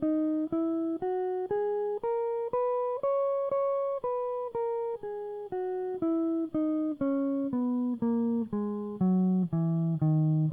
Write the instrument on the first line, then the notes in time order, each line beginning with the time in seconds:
electric guitar
0.03 D#4
0.53 E4
1.03 F#4
1.51 G#4
2.04 A#4
2.54 B4
3.04 C#5
3.52 C#5
4.04 B4
4.55 A#4
5.04 G#4
5.53 F#4
6.03 E4
6.55 D#4
7.02 C#4
7.54 B3
8.03 A#3
8.54 G#3
9.02 F#3
9.54 E3
10.03 D#3